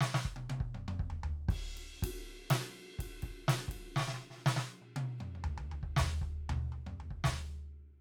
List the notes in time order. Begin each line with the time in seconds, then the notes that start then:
0.02 snare
0.14 snare
0.25 kick
0.36 high tom
0.49 high tom
0.60 kick
0.74 mid tom
0.88 mid tom
0.99 kick
1.10 floor tom
1.23 floor tom
1.49 kick, ride
1.77 ride
2.02 kick, ride
2.50 snare, ride
2.99 kick, ride
3.22 kick, ride
3.48 snare, ride
3.68 kick, ride
3.93 kick, snare, hi-hat pedal
3.99 snare
4.08 snare
4.14 snare
4.20 snare
4.30 snare
4.34 snare
4.37 snare
4.45 snare, hi-hat pedal
4.56 snare
4.82 high tom
4.96 high tom
5.10 high tom
5.18 hi-hat pedal, mid tom
5.35 mid tom
5.44 floor tom
5.58 floor tom
5.71 floor tom
5.83 kick
5.96 snare, floor tom
6.21 kick, floor tom
6.49 floor tom, high tom
6.72 floor tom
6.86 mid tom
7.00 floor tom
7.11 kick
7.24 snare, floor tom